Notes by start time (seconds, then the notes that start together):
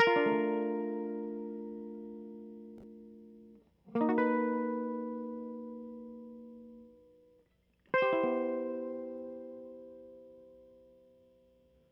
0.00 A#4
0.07 F4
0.17 D4
0.27 A3
3.96 A#3
4.01 D#4
4.09 F#4
4.18 B4
7.94 C5
8.03 G4
8.13 E4
8.24 B3